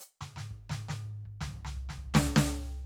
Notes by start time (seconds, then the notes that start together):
0.00 hi-hat pedal
0.21 snare, high tom
0.36 snare, high tom
0.51 kick
0.69 snare, high tom
0.89 snare, high tom
1.05 kick
1.25 kick
1.41 snare, floor tom
1.54 kick
1.65 snare, floor tom
1.76 kick
1.89 snare, floor tom
1.98 kick
2.14 snare, floor tom
2.36 snare